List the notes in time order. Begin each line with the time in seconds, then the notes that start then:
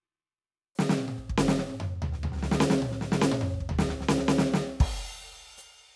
0.75 snare, hi-hat pedal
0.89 snare
0.98 high tom
1.08 high tom
1.18 kick
1.29 kick
1.38 snare
1.48 snare
1.70 high tom
1.80 mid tom
2.02 floor tom
2.12 snare
2.23 floor tom
2.32 snare
2.36 snare
2.40 snare
2.42 snare
2.51 snare
2.60 snare
2.70 snare
2.82 high tom
2.91 snare
3.01 snare
3.12 snare
3.22 snare
3.32 high tom
3.41 mid tom
3.54 kick
3.60 kick
3.69 floor tom
3.79 snare
3.89 snare
4.01 snare
4.09 snare
4.18 snare
4.28 snare
4.38 snare, hi-hat pedal
4.54 snare
4.80 kick, crash
5.57 hi-hat pedal